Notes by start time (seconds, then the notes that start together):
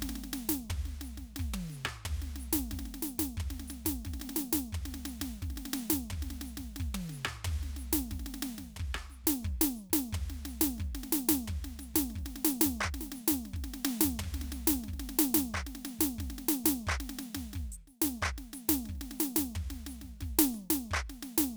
0.01 kick, snare
0.09 snare
0.15 snare
0.24 snare
0.33 snare, hi-hat pedal
0.49 kick, snare
0.70 kick, floor tom
0.85 snare
1.01 snare, hi-hat pedal
1.17 kick, snare
1.36 kick, snare
1.54 high tom
1.70 snare, hi-hat pedal
1.84 kick, cross-stick
2.05 kick, floor tom
2.22 snare
2.36 snare, hi-hat pedal
2.53 kick, snare
2.71 kick, snare
2.79 snare
2.85 snare
2.94 snare
3.02 snare, hi-hat pedal
3.18 kick, snare
3.37 kick, floor tom
3.50 snare
3.59 snare
3.68 snare, hi-hat pedal
3.85 kick, snare
4.05 kick, snare
4.13 snare
4.20 snare
4.21 snare
4.29 snare
4.36 snare, hi-hat pedal
4.53 kick, snare
4.72 kick, floor tom
4.85 snare
4.94 snare
5.05 snare, hi-hat pedal
5.20 kick, snare
5.42 kick, snare
5.50 snare
5.56 snare
5.65 snare
5.73 snare, hi-hat pedal
5.90 kick, snare
6.10 kick, floor tom
6.22 snare
6.30 snare
6.41 snare
6.45 hi-hat pedal
6.57 kick, snare
6.76 kick, snare
6.94 high tom
7.09 snare, hi-hat pedal
7.25 kick, cross-stick
7.44 kick, floor tom
7.63 snare
7.76 snare, hi-hat pedal
7.92 kick, snare
8.11 kick, snare
8.19 snare
8.26 snare
8.34 snare
8.42 snare, hi-hat pedal
8.58 kick, snare
8.76 kick, floor tom
8.94 cross-stick
9.10 snare, hi-hat pedal
9.24 kick, snare
9.43 kick, snare
9.61 snare
9.76 snare, hi-hat pedal
9.90 kick, snare
10.12 kick, floor tom
10.30 snare
10.45 snare, hi-hat pedal
10.61 kick, snare
10.78 kick, snare
10.88 snare
10.95 snare
11.03 snare
11.12 snare, hi-hat pedal
11.29 kick, snare
11.47 kick, floor tom
11.64 snare
11.79 snare, hi-hat pedal
11.94 kick, snare
12.10 snare
12.15 kick, snare
12.25 snare
12.36 snare
12.45 snare, hi-hat pedal
12.61 snare
12.66 kick
12.80 percussion
12.85 kick
12.94 snare
13.01 snare
13.12 snare, hi-hat pedal
13.28 kick, snare
13.45 snare
13.53 kick, snare
13.64 snare
13.74 snare
13.84 snare, hi-hat pedal
14.01 kick, snare
14.19 floor tom
14.24 kick
14.34 snare
14.41 snare
14.52 snare, hi-hat pedal
14.67 kick, snare
14.84 snare
14.88 kick
14.93 snare
14.99 snare
15.09 snare
15.19 snare, hi-hat pedal
15.34 kick, snare
15.54 kick, percussion
15.66 snare
15.75 snare
15.85 snare, hi-hat pedal
15.99 kick, snare
16.18 kick, snare
16.30 snare
16.38 snare
16.48 snare, hi-hat pedal
16.64 kick, snare
16.87 kick, percussion
17.00 snare
17.09 snare
17.19 snare, hi-hat pedal
17.35 kick, snare
17.53 kick, snare
17.72 open hi-hat
17.87 snare, hi-hat pedal
18.02 kick, snare
18.07 snare
18.22 kick, percussion
18.38 snare
18.53 snare, hi-hat pedal
18.68 kick, snare
18.85 kick, snare
18.95 snare
19.01 snare
19.11 snare
19.19 snare, hi-hat pedal
19.36 kick, snare
19.55 kick, floor tom
19.70 snare
19.86 snare, hi-hat pedal
20.01 kick, snare
20.21 kick, snare
20.39 snare
20.53 snare, hi-hat pedal
20.70 kick, snare
20.91 kick, percussion
21.09 snare
21.22 snare, hi-hat pedal
21.37 kick, snare